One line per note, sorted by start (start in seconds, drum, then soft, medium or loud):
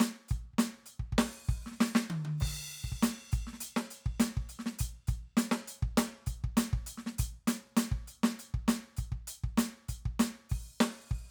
0.00 closed hi-hat loud
0.00 snare loud
0.29 closed hi-hat medium
0.29 kick medium
0.54 kick soft
0.58 closed hi-hat loud
0.58 snare loud
0.86 closed hi-hat medium
0.99 kick soft
1.12 kick medium
1.18 open hi-hat loud
1.18 snare loud
1.48 open hi-hat medium
1.48 kick medium
1.66 snare soft
1.71 snare soft
1.80 snare loud
1.85 hi-hat pedal medium
1.95 snare loud
2.10 high tom loud
2.25 high tom medium
2.38 hi-hat pedal soft
2.38 crash loud
2.42 kick medium
2.70 closed hi-hat soft
2.84 kick soft
2.92 kick soft
3.03 closed hi-hat loud
3.03 snare loud
3.32 closed hi-hat medium
3.32 kick medium
3.47 snare soft
3.53 snare soft
3.59 closed hi-hat loud
3.59 snare soft
3.76 snare medium
3.91 closed hi-hat medium
4.06 kick medium
4.20 closed hi-hat loud
4.20 snare loud
4.37 kick medium
4.49 closed hi-hat medium
4.59 snare medium
4.66 snare medium
4.73 snare soft
4.79 closed hi-hat loud
4.79 kick medium
5.07 closed hi-hat medium
5.07 kick medium
5.37 closed hi-hat loud
5.37 snare loud
5.51 snare loud
5.68 closed hi-hat loud
5.83 kick medium
5.97 closed hi-hat loud
5.97 snare loud
6.26 closed hi-hat medium
6.26 kick medium
6.44 kick medium
6.57 closed hi-hat loud
6.57 snare loud
6.73 kick medium
6.86 closed hi-hat loud
6.98 snare soft
7.06 snare medium
7.18 closed hi-hat loud
7.18 kick medium
7.47 closed hi-hat loud
7.47 snare loud
7.77 closed hi-hat loud
7.77 snare loud
7.92 kick medium
8.07 closed hi-hat medium
8.23 snare loud
8.39 closed hi-hat medium
8.54 kick medium
8.68 closed hi-hat loud
8.68 snare loud
8.97 closed hi-hat medium
8.97 kick medium
9.12 kick medium
9.27 closed hi-hat loud
9.44 kick medium
9.58 closed hi-hat loud
9.58 snare loud
9.89 closed hi-hat medium
9.89 kick soft
10.05 kick medium
10.20 closed hi-hat loud
10.20 snare loud
10.49 open hi-hat medium
10.49 kick medium
10.80 open hi-hat medium
10.80 snare loud
11.11 kick medium